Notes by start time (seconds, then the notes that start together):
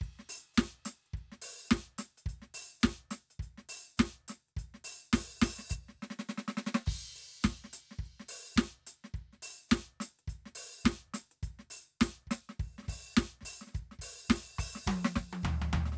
0.01 kick, closed hi-hat
0.19 snare
0.29 open hi-hat
0.54 kick, snare, hi-hat pedal
0.85 open hi-hat, snare
1.06 closed hi-hat
1.13 kick, closed hi-hat
1.32 snare
1.42 open hi-hat
1.68 snare, hi-hat pedal
1.72 kick
1.98 closed hi-hat, snare
2.17 closed hi-hat
2.26 closed hi-hat, kick
2.42 snare
2.54 open hi-hat
2.80 kick, snare, hi-hat pedal
3.11 closed hi-hat, snare
3.30 closed hi-hat
3.39 closed hi-hat, kick
3.58 snare
3.69 open hi-hat
3.97 kick, snare, hi-hat pedal
4.28 closed hi-hat, snare
4.48 closed hi-hat
4.57 closed hi-hat, kick
4.74 snare
4.84 open hi-hat
5.13 open hi-hat, kick, snare
5.42 open hi-hat, kick, snare
5.58 snare
5.70 open hi-hat, kick, hi-hat pedal
5.89 snare
5.95 kick
6.02 snare
6.10 snare
6.19 snare
6.29 snare
6.38 snare
6.48 snare
6.57 snare
6.66 snare
6.74 snare
6.86 kick, crash
7.16 open hi-hat
7.42 kick, snare, closed hi-hat, hi-hat pedal
7.64 snare
7.73 closed hi-hat
7.91 snare
7.96 kick, closed hi-hat
8.05 closed hi-hat
8.20 snare
8.29 open hi-hat
8.55 kick, snare, hi-hat pedal
8.87 closed hi-hat
9.04 snare
9.14 kick, closed hi-hat
9.33 snare
9.42 open hi-hat
9.69 kick, snare, hi-hat pedal
9.73 closed hi-hat
10.00 closed hi-hat, snare
10.19 closed hi-hat
10.28 closed hi-hat, kick
10.46 snare
10.55 open hi-hat
10.83 kick, snare, closed hi-hat, hi-hat pedal
11.08 kick
11.14 closed hi-hat, snare
11.31 closed hi-hat
11.43 closed hi-hat, kick
11.59 snare
11.70 open hi-hat
12.00 closed hi-hat, kick, snare, hi-hat pedal
12.27 closed hi-hat, kick, snare
12.49 snare
12.59 kick, open hi-hat
12.78 snare
12.83 snare
12.87 open hi-hat, kick, snare
12.92 snare
13.13 closed hi-hat, snare, hi-hat pedal
13.18 kick
13.41 kick, snare
13.45 open hi-hat
13.61 snare
13.67 snare
13.72 kick, snare, hi-hat pedal, open hi-hat
13.91 snare
13.99 open hi-hat, kick
14.29 open hi-hat, kick, snare
14.58 open hi-hat, kick, cross-stick
14.75 snare
14.87 kick, high tom
15.05 snare
15.16 kick, snare
15.33 high tom
15.43 kick, floor tom
15.62 floor tom
15.73 kick, floor tom
15.86 snare
15.92 snare